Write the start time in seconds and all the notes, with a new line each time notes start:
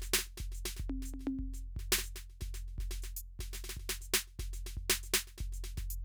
0.01 snare, hi-hat pedal
0.14 snare
0.19 snare
0.27 snare
0.38 kick, snare
0.51 snare, hi-hat pedal, open hi-hat
0.66 snare
0.76 kick, snare
0.90 high tom
1.02 snare, hi-hat pedal
1.14 high tom
1.19 snare
1.27 high tom
1.39 kick
1.54 snare, hi-hat pedal
1.77 kick, snare
1.92 snare
1.99 snare
2.04 snare, hi-hat pedal
2.16 snare
2.30 snare
2.41 kick, snare
2.54 snare, closed hi-hat, hi-hat pedal
2.68 snare
2.78 kick, snare
2.91 snare
3.02 snare, closed hi-hat, hi-hat pedal
3.17 closed hi-hat
3.39 kick, snare
3.51 snare
3.53 snare, hi-hat pedal
3.64 snare
3.69 snare
3.77 kick, snare
3.89 snare
4.01 snare, hi-hat pedal
4.14 snare
4.28 snare
4.39 kick, snare
4.53 snare, closed hi-hat, hi-hat pedal
4.66 snare
4.77 kick, snare
4.90 snare
5.03 snare, hi-hat pedal
5.14 snare
5.27 snare
5.38 kick, snare
5.52 snare, hi-hat pedal
5.64 snare
5.77 kick, snare
5.90 closed hi-hat